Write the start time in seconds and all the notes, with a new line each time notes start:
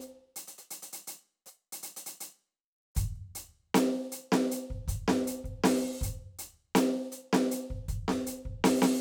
0.01 hi-hat pedal
0.36 closed hi-hat
0.48 closed hi-hat
0.58 closed hi-hat
0.71 closed hi-hat
0.83 closed hi-hat
0.93 closed hi-hat
1.08 closed hi-hat
1.46 hi-hat pedal
1.73 closed hi-hat
1.83 closed hi-hat
1.97 closed hi-hat
2.06 closed hi-hat
2.21 open hi-hat
2.95 closed hi-hat, kick, hi-hat pedal
3.16 closed hi-hat
3.35 closed hi-hat
3.75 closed hi-hat, snare
3.95 closed hi-hat
4.12 closed hi-hat
4.32 snare
4.52 closed hi-hat
4.70 kick, closed hi-hat
4.88 closed hi-hat, kick
5.08 snare
5.28 closed hi-hat
5.44 kick, closed hi-hat
5.64 open hi-hat, snare
6.01 closed hi-hat, kick, hi-hat pedal
6.22 closed hi-hat
6.39 closed hi-hat
6.75 closed hi-hat, snare
7.12 closed hi-hat
7.33 snare
7.52 closed hi-hat
7.70 kick, closed hi-hat
7.89 closed hi-hat, kick
8.08 snare
8.27 closed hi-hat
8.43 kick, closed hi-hat
8.64 open hi-hat, snare
8.82 open hi-hat, snare